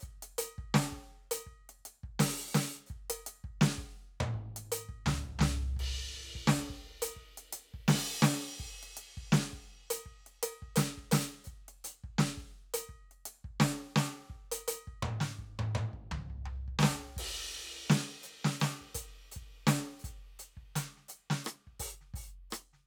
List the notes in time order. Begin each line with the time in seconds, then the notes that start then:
0.01 kick, hi-hat pedal
0.23 closed hi-hat
0.39 closed hi-hat
0.59 kick
0.75 snare
0.93 kick
1.32 closed hi-hat
1.47 kick
1.70 closed hi-hat
1.80 kick
1.86 closed hi-hat
2.04 kick
2.20 open hi-hat, snare
2.55 open hi-hat, snare
2.87 kick, hi-hat pedal
3.11 closed hi-hat
3.27 closed hi-hat
3.45 kick
3.62 snare
3.79 kick
4.21 high tom
4.35 kick
4.57 closed hi-hat
4.73 closed hi-hat
4.90 kick
5.07 snare, floor tom
5.26 kick
5.40 snare, floor tom
5.77 kick, ride
6.36 kick
6.48 snare
6.71 kick
7.03 closed hi-hat
7.17 kick
7.38 closed hi-hat
7.53 closed hi-hat
7.75 kick
7.89 snare, crash
8.23 snare, hi-hat pedal
8.60 kick
8.84 closed hi-hat
8.98 closed hi-hat
9.18 kick
9.33 snare
9.54 kick
9.91 closed hi-hat
10.07 kick
10.27 closed hi-hat
10.44 closed hi-hat
10.63 kick
10.77 open hi-hat, snare
10.98 kick
11.12 open hi-hat, snare
11.45 kick, hi-hat pedal
11.69 closed hi-hat
11.85 closed hi-hat
12.04 kick
12.19 snare
12.38 kick
12.75 closed hi-hat
12.90 kick
13.12 closed hi-hat
13.26 closed hi-hat
13.45 kick
13.61 snare
13.97 snare
14.31 kick
14.52 closed hi-hat
14.69 closed hi-hat
14.88 kick
15.03 high tom
15.21 snare
15.39 kick
15.60 high tom
15.76 high tom
15.94 kick
16.12 floor tom
16.31 kick
16.46 floor tom
16.69 kick
16.80 snare
16.84 snare
17.17 kick, crash, ride
17.90 snare
18.24 hi-hat pedal
18.45 snare
18.61 snare, hi-hat pedal
18.82 kick
18.95 open hi-hat, kick
19.32 open hi-hat
19.37 kick
19.68 open hi-hat, snare
19.74 snare
19.87 snare
20.00 hi-hat pedal
20.05 closed hi-hat, kick
20.40 closed hi-hat
20.58 kick
20.76 closed hi-hat, snare
20.97 snare
21.09 closed hi-hat, hi-hat pedal
21.31 snare
21.45 cross-stick, hi-hat pedal
21.68 kick
21.80 open hi-hat, kick
22.01 snare
22.06 snare
22.15 open hi-hat, kick
22.51 closed hi-hat, cross-stick, hi-hat pedal
22.74 snare